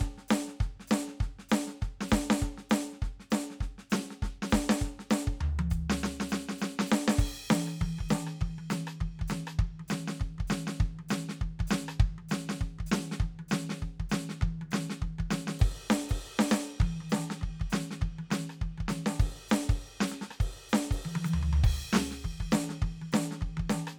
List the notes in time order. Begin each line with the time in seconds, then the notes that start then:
0.01 kick, snare
0.18 snare
0.28 snare, hi-hat pedal
0.48 snare
0.60 kick, snare
0.80 snare
0.88 snare, hi-hat pedal
1.08 snare
1.20 kick, snare
1.39 snare
1.49 snare, hi-hat pedal
1.68 snare
1.82 kick, snare
2.01 snare
2.09 kick, snare, hi-hat pedal
2.30 snare
2.42 kick, snare
2.58 snare
2.70 snare, hi-hat pedal
2.93 snare
3.02 kick, snare
3.20 snare
3.31 snare, hi-hat pedal
3.50 snare
3.61 kick, snare
3.78 snare
3.90 snare, hi-hat pedal
3.97 kick
4.11 snare
4.22 kick, snare
4.42 snare
4.50 kick, snare, hi-hat pedal
4.70 snare
4.82 kick, snare
4.99 snare
5.10 snare, hi-hat pedal
5.27 kick
5.41 floor tom
5.59 high tom
5.71 kick, hi-hat pedal
5.90 snare
6.04 snare
6.20 snare
6.29 snare, hi-hat pedal
6.49 snare
6.58 snare, hi-hat pedal
6.79 snare
6.86 kick, hi-hat pedal
6.92 snare
7.08 snare
7.19 kick, crash
7.49 snare, hi-hat pedal, high tom
7.68 cross-stick
7.81 kick, high tom
7.99 kick, high tom
8.09 snare, hi-hat pedal, high tom
8.27 cross-stick
8.41 kick, high tom
8.58 high tom
8.70 snare, hi-hat pedal, high tom
8.87 cross-stick
9.01 kick, high tom
9.19 kick, high tom
9.28 snare, hi-hat pedal, high tom
9.47 cross-stick
9.59 kick, high tom
9.80 high tom
9.88 snare, hi-hat pedal, high tom
10.08 snare
10.20 kick, high tom
10.38 kick, high tom
10.47 snare, hi-hat pedal, high tom
10.67 snare
10.80 kick, high tom
10.99 high tom
11.09 snare, hi-hat pedal, high tom
11.29 snare
11.41 kick, high tom
11.59 kick, high tom
11.67 snare, hi-hat pedal
11.72 high tom
11.88 cross-stick
12.00 kick, high tom
12.18 high tom
12.29 snare, hi-hat pedal, high tom
12.49 snare
12.61 kick, high tom
12.79 kick, high tom
12.87 hi-hat pedal
12.92 snare, high tom
13.12 snare
13.20 kick, high tom
13.39 high tom
13.49 snare, hi-hat pedal, high tom
13.70 snare
13.82 kick, high tom
14.00 kick, high tom
14.09 snare, hi-hat pedal, high tom
14.29 snare
14.41 kick, high tom
14.61 high tom
14.71 snare, hi-hat pedal, high tom
14.90 snare
15.02 kick, high tom
15.19 kick, high tom
15.31 snare, hi-hat pedal, high tom
15.47 snare
15.59 kick, crash
15.90 snare, hi-hat pedal
16.09 kick, crash
16.39 snare
16.49 snare, hi-hat pedal
16.80 kick, high tom
17.01 high tom
17.10 snare, hi-hat pedal, high tom
17.30 snare
17.41 kick, high tom
17.60 kick, high tom
17.70 snare, hi-hat pedal, high tom
17.91 snare
18.02 kick, high tom
18.19 high tom
18.31 snare, hi-hat pedal, high tom
18.50 cross-stick
18.62 kick, high tom
18.78 kick, high tom
18.88 snare, hi-hat pedal, high tom
19.06 snare
19.20 kick, crash
19.49 snare, hi-hat pedal
19.69 kick, crash
20.01 snare
20.07 hi-hat pedal
20.12 snare
20.21 snare
20.31 cross-stick
20.40 kick, crash
20.69 hi-hat pedal
20.73 snare
20.91 kick, crash
21.05 high tom
21.15 high tom
21.25 hi-hat pedal, high tom
21.34 floor tom
21.43 floor tom
21.53 floor tom
21.64 kick, crash
21.93 snare, hi-hat pedal
21.95 snare
22.11 snare
22.21 kick, hi-hat pedal, high tom
22.40 kick, high tom
22.52 snare, hi-hat pedal, high tom
22.69 snare
22.82 kick, high tom
23.02 high tom
23.12 snare, hi-hat pedal, high tom
23.31 snare
23.41 kick, high tom
23.57 kick, high tom
23.70 snare, hi-hat pedal, high tom
23.87 cross-stick